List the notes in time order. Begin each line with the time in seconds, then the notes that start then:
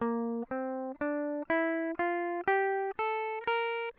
0.02 A#3
0.52 C4
1.02 D4
1.51 E4
2.00 F4
2.48 G4
3.00 A4
3.48 A#4